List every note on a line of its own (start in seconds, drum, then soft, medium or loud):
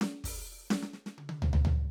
0.01 snare medium
0.24 open hi-hat loud
0.24 kick medium
0.67 snare loud
0.67 hi-hat pedal soft
0.83 snare medium
0.93 snare soft
1.06 snare soft
1.18 high tom medium
1.29 high tom medium
1.42 floor tom loud
1.53 floor tom loud
1.65 floor tom loud